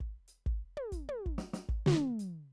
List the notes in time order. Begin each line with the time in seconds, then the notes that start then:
0.00 kick
0.28 hi-hat pedal
0.46 kick
0.76 high tom
0.92 kick, hi-hat pedal
1.08 high tom
1.26 kick
1.38 snare
1.53 snare, hi-hat pedal
1.69 kick
1.86 snare, floor tom
2.19 hi-hat pedal